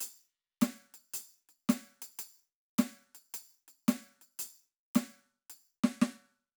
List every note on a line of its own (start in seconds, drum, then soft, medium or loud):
0.01 percussion loud
0.62 snare loud
0.62 percussion loud
0.94 percussion medium
1.14 percussion loud
1.49 percussion soft
1.69 snare loud
1.69 percussion loud
2.02 percussion loud
2.19 percussion loud
2.79 snare loud
2.79 percussion loud
3.15 percussion medium
3.34 percussion loud
3.68 percussion soft
3.89 snare loud
3.89 percussion loud
4.22 percussion soft
4.40 percussion loud
4.95 snare loud
4.95 percussion loud
5.50 percussion medium
5.84 snare loud
6.02 snare loud